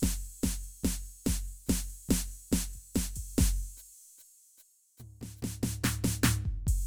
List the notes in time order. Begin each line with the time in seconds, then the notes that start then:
0.01 kick, snare, hi-hat pedal, crash
0.22 crash
0.43 kick, snare, hi-hat pedal, crash
0.64 crash
0.84 kick, snare, hi-hat pedal, crash
1.07 crash
1.25 kick, snare, hi-hat pedal, crash
1.49 crash
1.67 kick, snare, hi-hat pedal, crash
1.91 crash
2.09 kick, snare, hi-hat pedal, crash
2.32 crash
2.52 kick, snare, hi-hat pedal, crash
2.74 kick, crash
2.95 kick, snare, hi-hat pedal, crash
3.16 kick, crash
3.38 kick, snare, hi-hat pedal, crash
3.77 hi-hat pedal
4.18 hi-hat pedal
4.58 hi-hat pedal
4.98 floor tom, hi-hat pedal
5.22 snare, floor tom
5.36 hi-hat pedal
5.43 snare, floor tom
5.64 snare, floor tom
5.84 snare, floor tom
6.05 snare, floor tom
6.24 snare, floor tom
6.46 kick
6.68 kick, crash